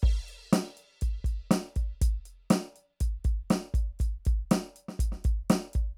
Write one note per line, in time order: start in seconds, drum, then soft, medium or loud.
0.01 kick medium
0.01 hi-hat pedal soft
0.01 crash medium
0.29 closed hi-hat soft
0.54 closed hi-hat loud
0.54 snare loud
0.78 closed hi-hat medium
1.02 closed hi-hat medium
1.02 kick medium
1.25 closed hi-hat medium
1.25 kick medium
1.52 closed hi-hat loud
1.52 snare loud
1.76 closed hi-hat medium
1.76 kick medium
2.02 closed hi-hat loud
2.02 kick medium
2.26 closed hi-hat medium
2.51 closed hi-hat loud
2.51 snare loud
2.76 closed hi-hat soft
3.01 closed hi-hat medium
3.01 kick medium
3.25 closed hi-hat medium
3.25 kick medium
3.51 closed hi-hat medium
3.51 snare loud
3.75 open hi-hat medium
3.75 kick medium
4.00 closed hi-hat medium
4.00 kick medium
4.00 hi-hat pedal medium
4.26 closed hi-hat medium
4.26 kick medium
4.52 closed hi-hat loud
4.52 snare loud
4.77 closed hi-hat medium
4.89 snare soft
5.00 closed hi-hat loud
5.00 kick medium
5.13 snare soft
5.25 closed hi-hat medium
5.25 kick medium
5.51 closed hi-hat loud
5.51 snare loud
5.74 closed hi-hat medium
5.74 kick medium